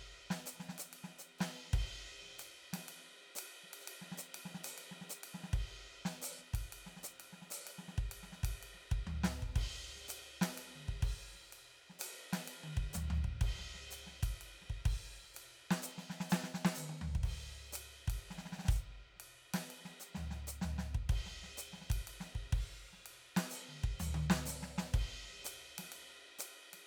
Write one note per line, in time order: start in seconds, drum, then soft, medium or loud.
0.30 snare medium
0.46 hi-hat pedal loud
0.46 ride medium
0.60 snare soft
0.69 snare soft
0.78 hi-hat pedal loud
0.78 ride medium
0.93 ride medium
1.03 snare soft
1.19 hi-hat pedal medium
1.39 snare medium
1.39 ride medium
1.73 kick medium
1.73 ride medium
2.22 snare soft
2.25 snare soft
2.29 snare soft
2.39 hi-hat pedal medium
2.39 ride medium
2.73 snare soft
2.73 ride loud
2.82 hi-hat pedal soft
2.88 ride medium
3.35 hi-hat pedal loud
3.35 ride loud
3.63 snare soft
3.73 ride medium
3.80 hi-hat pedal soft
3.88 ride medium
4.01 snare soft
4.11 snare soft
4.17 hi-hat pedal loud
4.34 ride medium
4.45 snare soft
4.54 snare soft
4.64 hi-hat pedal medium
4.64 ride loud
4.78 ride medium
4.91 snare soft
5.01 snare soft
5.09 hi-hat pedal loud
5.23 ride medium
5.34 snare soft
5.43 snare soft
5.52 kick soft
5.52 snare soft
5.52 ride medium
5.68 ride soft
6.05 snare medium
6.22 hi-hat pedal loud
6.22 ride medium
6.38 snare soft
6.54 kick soft
6.54 ride medium
6.62 hi-hat pedal soft
6.72 ride medium
6.86 snare soft
6.96 snare soft
7.03 hi-hat pedal loud
7.20 ride medium
7.32 snare soft
7.42 snare soft
7.50 hi-hat pedal loud
7.50 ride medium
7.67 ride medium
7.71 hi-hat pedal soft
7.78 snare soft
7.88 snare soft
7.98 kick soft
8.11 ride medium
8.23 snare soft
8.32 snare soft
8.43 kick soft
8.43 ride loud
8.63 ride medium
8.74 snare soft
8.91 kick soft
9.07 floor tom medium
9.23 snare medium
9.42 kick soft
9.56 kick medium
9.56 ride medium
9.96 snare soft
10.08 hi-hat pedal loud
10.08 ride medium
10.41 snare medium
10.41 ride loud
10.53 hi-hat pedal soft
10.58 ride medium
10.75 high tom soft
10.88 kick soft
11.02 kick medium
11.02 crash medium
11.34 snare soft
11.52 hi-hat pedal soft
11.52 ride medium
11.89 snare soft
11.99 hi-hat pedal medium
11.99 ride loud
12.33 snare medium
12.33 ride medium
12.44 hi-hat pedal soft
12.44 ride medium
12.63 high tom medium
12.77 kick soft
12.93 floor tom medium
12.93 hi-hat pedal loud
13.10 floor tom medium
13.14 hi-hat pedal soft
13.24 kick soft
13.41 kick medium
13.41 ride medium
13.59 snare soft
13.74 snare soft
13.91 hi-hat pedal medium
13.91 ride medium
14.06 snare soft
14.23 kick soft
14.23 ride medium
14.41 ride medium
14.61 snare soft
14.70 kick soft
14.85 kick medium
14.85 crash medium
15.22 snare soft
15.34 hi-hat pedal soft
15.34 ride medium
15.71 snare medium
15.82 hi-hat pedal loud
15.82 ride medium
15.97 snare soft
16.10 snare soft
16.20 snare soft
16.30 snare medium
16.30 hi-hat pedal loud
16.43 snare soft
16.54 snare soft
16.65 snare medium
16.75 hi-hat pedal medium
16.75 high tom medium
16.89 high tom medium
17.01 floor tom medium
17.15 kick soft
17.23 kick soft
17.23 crash medium
17.23 ride medium
17.73 hi-hat pedal loud
17.73 ride medium
18.07 kick soft
18.07 ride medium
18.17 hi-hat pedal soft
18.17 ride soft
18.30 snare soft
18.38 snare soft
18.45 snare soft
18.52 snare soft
18.59 snare soft
18.65 kick medium
18.65 snare soft
18.70 open hi-hat medium
19.16 snare soft
19.20 ride medium
19.54 snare medium
19.54 ride loud
19.70 ride medium
19.85 snare soft
20.00 hi-hat pedal medium
20.14 snare soft
20.14 floor tom medium
20.30 snare soft
20.47 hi-hat pedal loud
20.61 snare soft
20.61 floor tom medium
20.78 snare soft
20.95 kick soft
21.09 kick medium
21.09 ride medium
21.26 snare soft
21.43 snare soft
21.57 hi-hat pedal loud
21.57 ride medium
21.73 snare soft
21.81 snare soft
21.90 kick soft
21.90 ride medium
22.07 ride medium
22.20 snare soft
22.35 kick soft
22.52 kick medium
22.52 crash soft
22.93 snare soft
23.06 ride medium
23.36 snare medium
23.36 ride loud
23.50 hi-hat pedal medium
23.50 ride medium
23.68 high tom soft
23.84 kick soft
24.00 floor tom medium
24.00 hi-hat pedal medium
24.14 open hi-hat soft
24.14 high tom medium
24.30 snare loud
24.46 snare soft
24.46 hi-hat pedal loud
24.62 snare soft
24.78 snare medium
24.94 kick medium
24.94 ride medium
25.23 snare soft
25.29 snare soft
25.33 snare soft
25.36 snare soft
25.38 snare soft
25.45 hi-hat pedal loud
25.45 ride medium
25.78 snare soft
25.78 ride loud
25.91 hi-hat pedal soft
25.91 ride medium
26.39 hi-hat pedal loud
26.39 ride medium
26.73 snare soft
26.73 ride medium